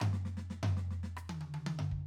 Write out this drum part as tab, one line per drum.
HH |----------x-----|
SD |roooo-ooor------|
T1 |----------oooo--|
FT |o----o--------o-|
BD |---------------o|